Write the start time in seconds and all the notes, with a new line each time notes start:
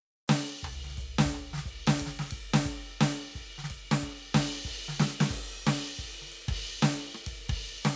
0.28 snare, hi-hat pedal, ride
0.52 ride
0.63 kick, floor tom
0.84 snare
0.88 snare
0.92 snare
0.97 kick, hi-hat pedal, ride
1.18 snare, ride
1.26 kick, ride
1.34 floor tom
1.53 snare
1.57 snare
1.60 snare
1.66 kick, hi-hat pedal, ride
1.87 snare, ride
2.00 kick, ride
2.06 snare
2.19 snare
2.31 kick, hi-hat pedal, ride
2.54 snare, ride
2.66 kick, ride
3.01 snare, hi-hat pedal, ride
3.23 ride
3.35 kick, ride
3.58 snare
3.64 snare
3.69 kick, hi-hat pedal, ride
3.91 snare, ride
4.03 kick, ride
4.34 kick, snare, hi-hat pedal, ride
4.50 snare, ride
4.65 kick, ride
4.88 snare
4.92 snare
5.00 snare, hi-hat pedal
5.20 snare
5.31 kick, crash
5.65 snare, hi-hat pedal, ride
5.88 ride
5.99 kick, ride
6.21 snare
6.25 snare
6.32 snare, hi-hat pedal, ride
6.48 kick, ride
6.82 snare
6.94 ride
7.15 cross-stick
7.27 kick, ride
7.49 kick, ride
7.85 snare